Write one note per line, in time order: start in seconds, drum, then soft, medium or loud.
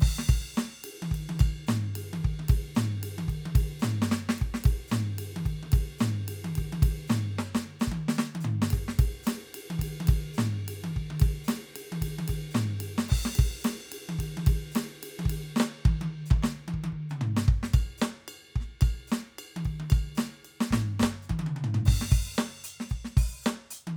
0.01 kick loud
0.01 crash loud
0.19 snare medium
0.29 kick loud
0.29 ride bell loud
0.54 snare loud
0.54 hi-hat pedal medium
0.85 ride loud
1.03 high tom loud
1.12 kick medium
1.12 ride medium
1.30 high tom loud
1.40 kick loud
1.40 ride bell loud
1.67 snare loud
1.67 floor tom loud
1.67 hi-hat pedal medium
1.96 ride loud
2.14 high tom loud
2.25 kick medium
2.40 high tom loud
2.49 kick loud
2.49 ride loud
2.75 snare loud
2.75 floor tom loud
2.75 hi-hat pedal medium
3.04 ride loud
3.19 high tom loud
3.29 kick medium
3.29 ride medium
3.46 high tom loud
3.56 kick loud
3.56 ride loud
3.80 snare loud
3.80 hi-hat pedal medium
3.85 floor tom loud
4.02 snare loud
4.12 snare loud
4.30 snare loud
4.39 kick medium
4.39 ride medium
4.55 snare loud
4.65 kick loud
4.65 ride loud
4.88 snare loud
4.88 floor tom loud
4.88 hi-hat pedal medium
5.19 ride loud
5.37 high tom loud
5.46 kick medium
5.46 ride medium
5.63 high tom loud
5.72 kick loud
5.72 ride loud
5.99 snare loud
5.99 floor tom loud
5.99 hi-hat pedal medium
6.29 ride loud
6.45 high tom loud
6.56 kick medium
6.56 ride loud
6.73 high tom loud
6.83 kick loud
6.83 ride loud
7.08 snare loud
7.08 floor tom loud
7.08 hi-hat pedal medium
7.39 snare medium
7.55 kick soft
7.55 snare loud
7.55 hi-hat pedal medium
7.65 high tom soft
7.80 snare loud
7.80 hi-hat pedal medium
7.88 kick medium
7.92 high tom loud
8.09 snare loud
8.14 hi-hat pedal medium
8.19 snare loud
8.36 high tom loud
8.41 floor tom loud
8.41 hi-hat pedal medium
8.62 snare loud
8.62 hi-hat pedal soft
8.71 kick medium
8.71 ride loud
8.89 snare medium
8.99 kick loud
8.99 ride loud
9.24 snare loud
9.24 hi-hat pedal medium
9.28 ride loud
9.55 ride loud
9.71 high tom loud
9.80 kick medium
9.80 ride loud
10.01 high tom loud
10.08 kick loud
10.08 ride loud
10.34 hi-hat pedal medium
10.39 snare loud
10.39 floor tom loud
10.69 ride loud
10.84 high tom loud
10.97 kick medium
11.11 high tom loud
11.20 kick loud
11.20 ride loud
11.45 hi-hat pedal medium
11.49 snare loud
11.49 ride loud
11.76 ride loud
11.93 high tom loud
12.02 kick medium
12.02 ride loud
12.19 high tom loud
12.28 kick medium
12.28 ride loud
12.51 snare loud
12.51 floor tom loud
12.51 hi-hat pedal medium
12.81 ride loud
12.99 snare loud
13.09 kick loud
13.09 crash loud
13.26 snare loud
13.36 kick loud
13.36 ride loud
13.60 hi-hat pedal medium
13.65 snare loud
13.65 ride loud
13.92 ride loud
14.09 high tom loud
14.19 kick medium
14.19 ride loud
14.38 high tom loud
14.47 kick loud
14.47 ride loud
14.72 hi-hat pedal medium
14.72 ride loud
14.76 snare loud
15.04 ride loud
15.20 high tom loud
15.26 kick medium
15.30 ride loud
15.57 snare loud
15.57 hi-hat pedal medium
15.60 snare loud
15.86 kick loud
15.86 high tom loud
16.02 high tom loud
16.26 hi-hat pedal medium
16.31 kick loud
16.31 high tom loud
16.43 cross-stick medium
16.43 snare loud
16.43 hi-hat pedal soft
16.68 high tom loud
16.74 kick medium
16.84 high tom loud
16.93 kick soft
17.10 hi-hat pedal soft
17.10 mid tom loud
17.22 floor tom loud
17.37 snare loud
17.49 kick loud
17.64 snare medium
17.74 kick loud
17.74 ride bell loud
17.98 snare loud
17.98 hi-hat pedal medium
18.29 ride bell loud
18.56 kick medium
18.61 snare soft
18.81 kick loud
18.81 ride bell loud
19.08 hi-hat pedal medium
19.12 snare loud
19.39 ride bell loud
19.57 high tom loud
19.65 kick medium
19.65 ride soft
19.80 high tom loud
19.91 kick loud
19.91 ride bell loud
20.16 snare loud
20.16 hi-hat pedal medium
20.16 ride bell loud
20.45 ride bell medium
20.61 snare loud
20.71 kick medium
20.71 snare loud
20.71 floor tom loud
21.00 kick soft
21.00 snare loud
21.04 snare loud
21.23 hi-hat pedal soft
21.30 kick medium
21.30 high tom loud
21.40 high tom loud
21.47 mid tom loud
21.57 mid tom loud
21.65 floor tom loud
21.75 floor tom loud
21.86 kick loud
21.86 crash loud
22.02 snare medium
22.11 open hi-hat loud
22.11 kick loud
22.35 hi-hat pedal medium
22.39 snare loud
22.64 closed hi-hat loud
22.81 snare medium
22.90 closed hi-hat soft
22.90 kick medium
23.05 snare medium
23.17 open hi-hat loud
23.17 kick loud
23.43 snare loud
23.43 hi-hat pedal medium
23.71 closed hi-hat loud
23.88 high tom loud